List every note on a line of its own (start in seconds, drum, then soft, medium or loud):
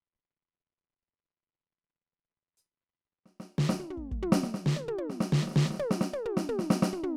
2.57 hi-hat pedal soft
3.26 snare soft
3.40 snare soft
3.58 snare loud
3.69 snare medium
3.79 floor tom medium
3.90 floor tom medium
3.97 kick soft
4.11 kick soft
4.22 floor tom loud
4.32 snare loud
4.43 snare medium
4.54 snare medium
4.66 snare loud
4.76 high tom medium
4.87 mid tom loud
4.98 high tom medium
5.10 snare soft
5.20 snare medium
5.32 snare loud
5.42 snare soft
5.47 snare soft
5.51 snare soft
5.56 snare loud
5.65 snare soft
5.70 snare soft
5.74 snare soft
5.79 high tom loud
5.91 snare medium
6.01 snare medium
6.13 high tom loud
6.25 mid tom loud
6.37 snare medium
6.48 mid tom loud
6.59 snare medium
6.70 snare loud
6.82 snare loud
6.92 floor tom medium
7.03 floor tom loud